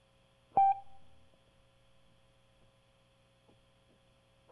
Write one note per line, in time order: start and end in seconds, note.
0.57 0.74 G5